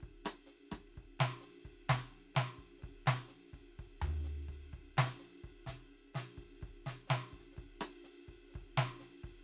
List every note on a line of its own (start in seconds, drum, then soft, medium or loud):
0.01 kick soft
0.01 ride soft
0.09 kick soft
0.26 cross-stick medium
0.26 ride medium
0.47 hi-hat pedal medium
0.47 ride soft
0.72 kick soft
0.72 cross-stick medium
0.72 ride soft
0.78 kick soft
0.78 snare soft
0.95 kick soft
0.95 ride soft
1.03 kick soft
1.20 snare loud
1.20 ride medium
1.28 cross-stick soft
1.41 hi-hat pedal medium
1.41 ride soft
1.58 snare soft
1.65 kick soft
1.65 ride soft
1.71 kick soft
1.89 kick soft
1.89 snare loud
1.89 ride medium
1.95 cross-stick soft
2.13 ride soft
2.35 snare loud
2.35 hi-hat pedal medium
2.35 ride medium
2.58 kick soft
2.58 ride soft
2.69 snare soft
2.79 hi-hat pedal soft
2.79 ride soft
2.84 kick soft
2.89 kick soft
3.07 snare loud
3.07 ride medium
3.28 hi-hat pedal medium
3.28 ride soft
3.54 kick soft
3.54 ride soft
3.59 kick soft
3.79 kick soft
3.79 ride soft
3.85 kick soft
4.02 floor tom loud
4.02 ride medium
4.25 hi-hat pedal medium
4.49 kick soft
4.49 ride medium
4.54 kick soft
4.73 kick soft
4.73 ride soft
4.79 kick soft
4.98 snare loud
4.98 ride medium
5.05 snare soft
5.20 hi-hat pedal medium
5.24 snare soft
5.29 snare soft
5.44 kick soft
5.44 ride soft
5.50 kick soft
5.66 kick soft
5.66 snare medium
5.66 hi-hat pedal soft
5.66 ride medium
5.74 kick soft
6.14 snare medium
6.14 hi-hat pedal medium
6.14 ride medium
6.38 kick soft
6.38 ride soft
6.43 kick soft
6.54 snare soft
6.62 kick soft
6.62 ride soft
6.69 kick soft
6.87 snare medium
6.87 ride medium
7.08 snare medium
7.08 hi-hat pedal medium
7.08 ride medium
7.33 kick soft
7.33 ride soft
7.38 kick soft
7.38 snare soft
7.52 hi-hat pedal soft
7.57 kick soft
7.57 ride soft
7.64 kick soft
7.81 cross-stick medium
7.81 ride medium
8.04 hi-hat pedal medium
8.04 ride soft
8.29 kick soft
8.29 ride soft
8.34 kick soft
8.50 hi-hat pedal soft
8.55 kick soft
8.55 ride soft
8.62 kick soft
8.78 snare loud
8.78 ride medium
8.86 snare soft
9.00 snare soft
9.00 hi-hat pedal medium
9.00 ride soft
9.24 kick soft
9.24 ride soft
9.30 kick soft